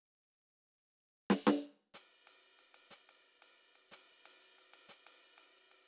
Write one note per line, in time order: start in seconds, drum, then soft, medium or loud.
1.30 snare loud
1.47 snare loud
1.94 hi-hat pedal medium
1.94 ride medium
2.27 ride medium
2.59 ride soft
2.74 ride medium
2.90 hi-hat pedal medium
3.09 ride soft
3.42 ride medium
3.75 ride soft
3.91 hi-hat pedal medium
3.91 ride medium
4.11 hi-hat pedal soft
4.25 ride medium
4.58 ride soft
4.73 ride medium
4.89 hi-hat pedal medium
5.07 ride medium
5.38 ride medium
5.71 ride soft